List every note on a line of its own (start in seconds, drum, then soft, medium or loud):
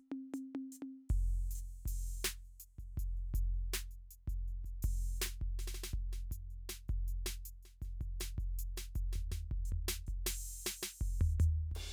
0.12 high tom medium
0.34 hi-hat pedal soft
0.34 high tom medium
0.55 high tom medium
0.72 hi-hat pedal medium
0.82 high tom medium
1.09 kick medium
1.09 crash soft
1.51 open hi-hat medium
1.55 hi-hat pedal medium
1.70 closed hi-hat soft
1.85 open hi-hat medium
1.85 kick soft
2.21 snare medium
2.21 hi-hat pedal soft
2.26 closed hi-hat soft
2.45 closed hi-hat soft
2.60 closed hi-hat medium
2.78 kick soft
2.78 closed hi-hat soft
2.97 closed hi-hat soft
2.97 kick soft
3.17 closed hi-hat soft
3.34 closed hi-hat medium
3.34 kick medium
3.54 closed hi-hat soft
3.73 snare medium
3.73 closed hi-hat soft
3.91 closed hi-hat soft
4.10 closed hi-hat medium
4.28 kick soft
4.28 closed hi-hat soft
4.48 closed hi-hat soft
4.64 closed hi-hat soft
4.64 kick soft
4.82 open hi-hat medium
4.82 kick medium
5.16 hi-hat pedal soft
5.21 closed hi-hat medium
5.21 snare medium
5.26 snare soft
5.41 kick soft
5.59 snare soft
5.59 hi-hat pedal medium
5.67 snare soft
5.74 snare soft
5.83 snare medium
5.93 kick soft
6.13 snare soft
6.31 closed hi-hat medium
6.31 kick soft
6.50 closed hi-hat soft
6.69 closed hi-hat medium
6.69 snare medium
6.88 kick medium
6.88 closed hi-hat soft
7.08 closed hi-hat soft
7.26 snare medium
7.26 closed hi-hat soft
7.45 closed hi-hat medium
7.62 snare soft
7.62 closed hi-hat soft
7.82 kick soft
7.82 snare soft
7.82 closed hi-hat soft
8.01 kick soft
8.01 closed hi-hat soft
8.20 closed hi-hat medium
8.20 snare medium
8.38 kick soft
8.38 closed hi-hat soft
8.59 closed hi-hat medium
8.77 snare medium
8.77 closed hi-hat soft
8.95 closed hi-hat soft
8.95 kick soft
9.13 snare soft
9.13 floor tom soft
9.32 snare soft
9.32 floor tom medium
9.51 kick soft
9.65 hi-hat pedal medium
9.72 floor tom medium
9.88 snare medium
9.88 closed hi-hat loud
10.07 kick soft
10.07 hi-hat pedal soft
10.26 open hi-hat loud
10.26 snare medium
10.66 snare medium
10.83 snare medium
11.01 kick medium
11.21 floor tom loud
11.40 floor tom loud
11.40 hi-hat pedal medium
11.71 kick soft
11.71 ride medium